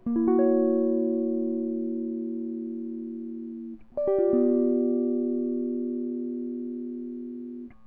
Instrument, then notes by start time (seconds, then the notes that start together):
electric guitar
0.07 A#3
0.16 E4
0.28 F#4
0.39 C#5
3.98 D5
4.08 G4
4.19 F4
4.34 B3